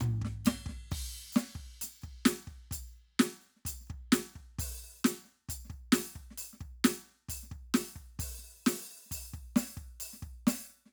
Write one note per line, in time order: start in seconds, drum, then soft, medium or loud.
0.01 kick medium
0.01 floor tom loud
0.01 percussion medium
0.22 kick medium
0.22 snare medium
0.45 kick soft
0.45 snare loud
0.45 ride bell loud
0.45 percussion medium
0.66 kick medium
0.66 snare soft
0.92 kick medium
0.92 crash medium
1.33 snare loud
1.33 percussion medium
1.38 percussion medium
1.56 kick soft
1.82 snare soft
1.82 percussion loud
2.03 kick soft
2.03 percussion soft
2.26 snare loud
2.26 percussion loud
2.48 kick soft
2.71 kick medium
2.71 snare soft
2.71 percussion loud
2.96 percussion soft
3.20 snare loud
3.20 percussion loud
3.42 percussion soft
3.57 snare soft
3.66 kick medium
3.66 percussion loud
3.81 snare soft
3.88 kick medium
3.88 percussion soft
4.13 snare loud
4.13 percussion loud
4.36 kick soft
4.59 kick medium
4.59 percussion loud
5.00 percussion soft
5.05 snare loud
5.05 percussion loud
5.25 snare soft
5.25 percussion soft
5.49 kick medium
5.49 percussion loud
5.65 snare soft
5.70 kick soft
5.70 percussion soft
5.93 snare loud
5.93 percussion loud
6.16 kick soft
6.16 percussion soft
6.31 snare soft
6.38 percussion loud
6.54 snare soft
6.60 kick soft
6.60 percussion soft
6.85 snare loud
6.85 percussion loud
7.29 kick soft
7.29 percussion loud
7.43 snare soft
7.52 kick soft
7.52 percussion soft
7.75 snare loud
7.75 percussion loud
7.96 kick soft
7.96 percussion soft
8.17 kick medium
8.17 snare soft
8.17 percussion loud
8.39 snare soft
8.39 percussion soft
8.67 snare loud
8.67 percussion loud
8.89 percussion soft
9.06 snare soft
9.12 kick soft
9.12 percussion loud
9.34 kick soft
9.34 percussion soft
9.57 snare loud
9.57 percussion loud
9.77 kick soft
9.77 percussion soft
10.01 percussion loud
10.14 snare soft
10.23 kick soft
10.23 percussion soft
10.48 snare loud
10.48 percussion loud
10.86 snare soft